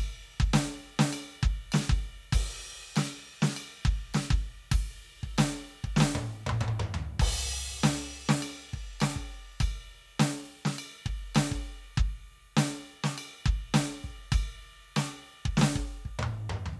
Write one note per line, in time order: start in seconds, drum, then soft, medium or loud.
0.41 kick loud
0.54 snare loud
0.54 ride bell loud
1.00 snare loud
1.14 ride bell loud
1.44 kick loud
1.73 snare loud
1.73 ride bell loud
1.90 kick loud
2.33 kick loud
2.33 ride bell loud
2.33 crash medium
2.97 snare loud
2.97 ride bell loud
3.43 snare loud
3.57 ride bell loud
3.86 kick loud
3.86 snare soft
4.15 snare loud
4.15 ride bell medium
4.31 kick loud
4.72 kick loud
4.72 ride loud
5.24 kick medium
5.39 snare loud
5.39 ride bell loud
5.85 kick loud
5.97 snare loud
6.01 snare loud
6.16 high tom loud
6.47 high tom loud
6.50 kick medium
6.50 high tom loud
6.62 high tom loud
6.69 high tom medium
6.80 mid tom loud
6.95 floor tom loud
7.20 kick loud
7.20 crash loud
7.84 snare loud
7.84 ride bell loud
8.30 snare loud
8.43 ride bell loud
8.74 kick medium
9.01 snare loud
9.01 ride bell loud
9.17 kick medium
9.61 kick loud
9.61 ride bell loud
10.20 snare loud
10.20 ride loud
10.46 ride soft
10.66 snare loud
10.79 ride bell loud
11.07 kick loud
11.36 snare loud
11.36 ride bell loud
11.52 kick loud
11.96 kick loud
11.96 ride soft
12.01 snare soft
12.58 snare loud
12.58 ride bell loud
13.04 snare loud
13.19 ride bell loud
13.46 kick loud
13.75 snare loud
13.75 ride bell loud
14.05 kick medium
14.33 kick loud
14.33 ride bell loud
14.97 snare loud
14.97 ride bell loud
15.46 kick loud
15.58 snare loud
15.62 snare loud
15.76 kick loud
16.06 kick medium
16.20 high tom loud
16.24 high tom loud
16.50 mid tom loud
16.66 floor tom loud
16.74 floor tom soft